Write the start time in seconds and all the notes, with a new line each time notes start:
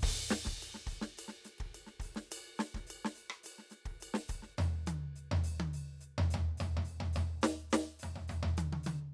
0.01 kick, hi-hat pedal, crash, ride
0.29 snare, hi-hat pedal
0.45 kick, snare
0.59 hi-hat pedal
0.63 ride bell
0.75 snare
0.87 kick, hi-hat pedal, ride
1.02 snare, ride
1.18 hi-hat pedal, ride bell
1.29 snare
1.45 snare, hi-hat pedal, ride
1.59 kick, ride
1.75 hi-hat pedal, ride bell
1.87 snare
2.00 kick, hi-hat pedal, ride
2.16 snare, ride
2.32 hi-hat pedal, ride bell
2.58 snare, hi-hat pedal, ride
2.75 kick, snare
2.87 hi-hat pedal, ride bell
3.05 snare
3.15 hi-hat pedal, ride bell
3.31 cross-stick
3.44 hi-hat pedal, ride bell
3.59 snare
3.71 snare, hi-hat pedal, ride bell
3.86 kick, ride
4.01 hi-hat pedal, ride bell
4.15 snare
4.29 kick, hi-hat pedal, ride bell
4.43 snare
4.58 floor tom, hi-hat pedal
4.87 closed hi-hat, hi-hat pedal, high tom
5.16 hi-hat pedal
5.32 floor tom
5.45 hi-hat pedal
5.61 open hi-hat, high tom
5.74 hi-hat pedal
6.01 hi-hat pedal
6.19 floor tom
6.31 floor tom, hi-hat pedal
6.58 floor tom, hi-hat pedal
6.78 floor tom
6.86 hi-hat pedal
7.01 floor tom
7.14 floor tom, hi-hat pedal
7.42 snare, hi-hat pedal
7.71 snare, hi-hat pedal
8.00 hi-hat pedal
8.04 floor tom
8.16 floor tom
8.29 floor tom, hi-hat pedal
8.44 floor tom
8.58 hi-hat pedal, high tom
8.73 high tom
8.84 hi-hat pedal, high tom